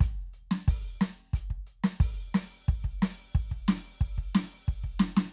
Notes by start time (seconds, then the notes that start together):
0.01 closed hi-hat, kick
0.34 closed hi-hat
0.51 snare
0.68 open hi-hat, kick
1.01 closed hi-hat, snare, hi-hat pedal
1.34 closed hi-hat, kick
1.51 kick
1.67 closed hi-hat
1.84 snare
2.00 open hi-hat, kick
2.35 open hi-hat, snare
2.69 kick
2.84 kick
2.89 crash
3.03 open hi-hat, snare
3.35 open hi-hat, kick
3.52 kick
3.56 crash
3.68 open hi-hat, snare
4.01 open hi-hat, kick
4.18 kick
4.24 ride
4.35 open hi-hat, snare
4.68 kick
4.84 kick
4.88 crash, ride
5.00 snare, hi-hat pedal
5.17 snare